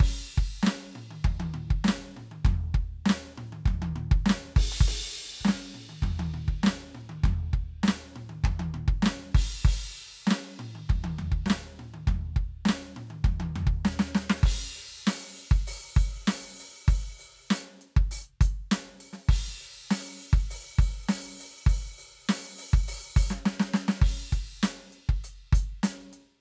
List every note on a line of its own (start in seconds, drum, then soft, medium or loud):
0.01 kick loud
0.01 crash loud
0.38 kick loud
0.64 snare loud
0.67 snare loud
0.96 mid tom medium
1.11 high tom medium
1.25 kick loud
1.25 floor tom loud
1.41 high tom loud
1.55 mid tom medium
1.71 kick medium
1.85 snare loud
1.89 snare loud
2.17 mid tom medium
2.32 high tom medium
2.46 kick loud
2.46 floor tom loud
2.75 kick loud
3.06 snare loud
3.10 snare loud
3.39 mid tom medium
3.53 high tom medium
3.66 kick loud
3.66 floor tom loud
3.83 high tom loud
3.97 mid tom loud
4.12 kick loud
4.27 snare loud
4.30 snare loud
4.57 kick loud
4.57 ride loud
4.72 crash loud
4.81 kick loud
4.88 ride loud
5.42 kick soft
5.46 snare loud
5.49 snare loud
5.55 kick soft
5.75 mid tom medium
5.90 high tom medium
6.03 kick medium
6.03 floor tom loud
6.20 high tom loud
6.35 mid tom medium
6.49 kick medium
6.64 snare loud
6.67 snare loud
6.96 mid tom medium
7.10 high tom medium
7.24 kick loud
7.24 floor tom loud
7.54 kick medium
7.84 snare loud
7.89 snare loud
8.17 mid tom medium
8.30 high tom medium
8.45 kick loud
8.45 floor tom loud
8.60 high tom loud
8.75 mid tom medium
8.89 kick loud
9.03 snare loud
9.07 snare loud
9.35 kick loud
9.35 crash loud
9.65 open hi-hat medium
9.65 kick loud
9.65 crash medium
10.27 snare loud
10.27 hi-hat pedal soft
10.31 snare loud
10.60 mid tom medium
10.76 high tom medium
10.90 kick loud
10.90 floor tom medium
11.05 high tom loud
11.19 floor tom loud
11.33 kick medium
11.47 snare loud
11.51 snare loud
11.80 mid tom medium
11.95 high tom medium
12.08 kick loud
12.08 floor tom loud
12.37 kick medium
12.66 snare loud
12.70 snare loud
12.97 mid tom medium
13.11 high tom medium
13.25 kick loud
13.25 floor tom loud
13.41 high tom loud
13.56 floor tom loud
13.68 kick loud
13.86 snare loud
14.00 snare loud
14.16 snare loud
14.30 snare loud
14.44 kick loud
14.44 crash loud
14.76 open hi-hat medium
15.07 open hi-hat loud
15.07 snare loud
15.38 open hi-hat medium
15.52 kick loud
15.68 open hi-hat loud
15.97 open hi-hat medium
15.97 kick loud
16.28 open hi-hat loud
16.28 snare loud
16.60 open hi-hat loud
16.89 open hi-hat medium
16.89 kick loud
17.20 open hi-hat medium
17.51 open hi-hat loud
17.51 snare loud
17.82 closed hi-hat medium
17.97 kick loud
18.12 open hi-hat loud
18.42 open hi-hat loud
18.42 kick loud
18.72 closed hi-hat loud
18.72 snare loud
19.01 open hi-hat loud
19.14 snare medium
19.30 kick loud
19.30 crash loud
19.48 snare soft
19.53 snare soft
19.61 open hi-hat medium
19.91 open hi-hat loud
19.91 snare loud
20.21 open hi-hat medium
20.34 kick loud
20.51 open hi-hat loud
20.79 open hi-hat medium
20.79 kick loud
21.09 open hi-hat loud
21.09 snare loud
21.41 open hi-hat loud
21.67 open hi-hat loud
21.67 kick loud
21.99 open hi-hat medium
22.30 open hi-hat loud
22.30 snare loud
22.59 open hi-hat loud
22.74 kick loud
22.89 open hi-hat loud
23.17 open hi-hat loud
23.17 kick loud
23.31 snare medium
23.31 hi-hat pedal soft
23.46 snare loud
23.59 snare loud
23.59 hi-hat pedal soft
23.75 snare loud
23.89 snare loud
24.02 kick loud
24.02 crash medium
24.33 closed hi-hat medium
24.33 kick medium
24.64 closed hi-hat loud
24.64 snare loud
24.93 closed hi-hat medium
25.10 kick loud
25.10 snare soft
25.25 closed hi-hat medium
25.53 closed hi-hat loud
25.53 kick loud
25.84 closed hi-hat loud
25.84 snare loud
26.14 closed hi-hat medium